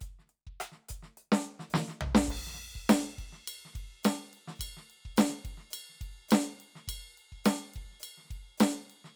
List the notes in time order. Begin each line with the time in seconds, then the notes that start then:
0.01 closed hi-hat, kick
0.07 kick
0.19 snare
0.26 snare, closed hi-hat
0.47 kick
0.60 closed hi-hat, cross-stick
0.72 snare
0.89 closed hi-hat, kick
0.96 kick
1.03 snare
1.18 hi-hat pedal, open hi-hat
1.32 snare
1.60 snare
1.70 kick, hi-hat pedal
1.74 snare
1.88 snare, hi-hat pedal
2.01 kick, floor tom
2.15 snare
2.28 kick, crash
2.34 kick
2.47 snare
2.54 snare
2.75 kick
2.90 snare, hi-hat pedal, ride bell
3.18 kick, ride
3.24 kick
3.33 snare
3.48 hi-hat pedal, ride bell
3.65 snare
3.73 kick, snare, ride
3.81 kick
3.84 kick
4.03 snare, hi-hat pedal, ride bell
4.33 ride
4.48 snare
4.56 kick, hi-hat pedal
4.61 ride bell
4.65 kick
4.77 snare
4.90 ride
5.05 kick
5.17 snare, hi-hat pedal, ride bell
5.29 snare
5.45 kick, ride
5.51 kick
5.54 kick, snare
5.71 hi-hat pedal, ride bell
5.90 snare
5.95 snare
6.01 kick, ride
6.10 kick
6.29 snare, hi-hat pedal, ride bell
6.60 ride
6.76 snare
6.88 kick, ride bell
6.94 kick
6.97 kick
7.18 ride
7.32 kick
7.45 snare, hi-hat pedal, ride bell
7.74 kick, ride
7.82 kick
7.84 kick
7.92 snare
8.00 hi-hat pedal, ride bell
8.18 snare
8.25 snare
8.31 kick, ride
8.37 kick
8.58 snare, hi-hat pedal, ride bell
8.90 ride
9.05 snare